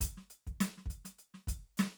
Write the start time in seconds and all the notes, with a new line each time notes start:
0.01 closed hi-hat, kick
0.17 snare
0.30 closed hi-hat
0.47 kick, closed hi-hat
0.60 closed hi-hat, snare
0.78 snare
0.86 kick
0.90 closed hi-hat
1.05 closed hi-hat, snare
1.19 closed hi-hat
1.34 snare
1.47 open hi-hat, kick
1.77 closed hi-hat, snare, hi-hat pedal
1.84 snare